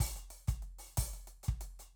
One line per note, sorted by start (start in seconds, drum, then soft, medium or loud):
0.00 open hi-hat loud
0.00 kick medium
0.16 open hi-hat medium
0.31 open hi-hat medium
0.48 open hi-hat medium
0.48 kick medium
0.62 open hi-hat soft
0.79 open hi-hat medium
0.97 kick medium
0.97 open hi-hat loud
1.14 open hi-hat soft
1.27 open hi-hat medium
1.43 open hi-hat medium
1.48 kick medium
1.61 open hi-hat medium
1.79 open hi-hat medium